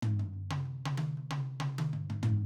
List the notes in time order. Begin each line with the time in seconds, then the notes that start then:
0.00 floor tom
0.19 floor tom
0.33 high tom
0.50 mid tom
0.65 high tom
0.85 mid tom
0.97 high tom
1.17 high tom
1.31 mid tom
1.60 mid tom
1.78 high tom
1.93 floor tom
2.10 floor tom
2.23 floor tom